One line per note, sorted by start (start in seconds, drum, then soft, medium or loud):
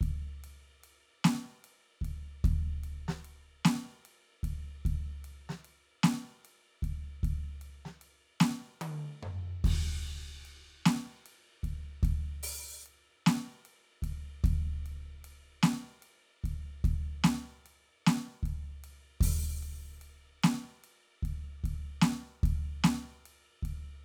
0.01 kick loud
0.01 ride soft
0.44 ride medium
0.84 ride soft
1.25 snare loud
1.25 ride medium
1.64 ride soft
2.02 kick medium
2.02 ride soft
2.44 kick loud
2.44 ride medium
2.84 ride soft
3.08 snare medium
3.25 ride soft
3.65 snare loud
3.65 ride medium
3.81 snare soft
4.05 ride soft
4.43 kick medium
4.43 ride medium
4.85 kick loud
4.85 ride medium
5.25 ride soft
5.49 snare medium
5.65 ride soft
6.04 snare loud
6.04 ride medium
6.20 snare soft
6.45 ride soft
6.83 kick medium
6.83 ride soft
7.23 kick loud
7.23 ride medium
7.54 snare soft
7.62 ride soft
7.85 snare soft
8.02 ride soft
8.40 snare loud
8.40 ride medium
8.81 high tom loud
8.81 ride medium
9.23 floor tom medium
9.64 kick loud
9.64 crash medium
10.07 ride soft
10.45 ride soft
10.86 snare loud
10.86 ride medium
11.26 ride medium
11.63 kick medium
11.63 ride soft
12.03 kick loud
12.03 ride medium
12.43 open hi-hat loud
12.43 ride medium
12.83 hi-hat pedal soft
12.83 ride soft
13.27 snare loud
13.27 ride medium
13.65 ride soft
14.03 kick medium
14.03 ride medium
14.44 kick loud
14.44 ride medium
14.86 ride soft
15.25 ride medium
15.63 snare loud
15.63 ride medium
15.77 snare soft
16.02 ride soft
16.44 kick medium
16.44 ride soft
16.84 kick loud
16.84 ride soft
17.24 snare loud
17.24 ride soft
17.64 snare soft
17.64 ride soft
18.07 snare loud
18.43 kick medium
18.43 ride soft
18.69 kick soft
18.84 ride medium
19.21 open hi-hat loud
19.21 kick loud
19.21 ride medium
19.63 ride soft
20.02 ride soft
20.43 snare loud
20.43 hi-hat pedal soft
20.43 ride medium
20.84 ride soft
21.23 kick medium
21.23 ride soft
21.64 kick medium
21.64 ride medium
22.02 snare loud
22.40 kick loud
22.40 snare soft
22.46 ride medium
22.84 snare loud
22.84 ride medium
23.26 ride medium
23.63 kick medium
23.63 ride medium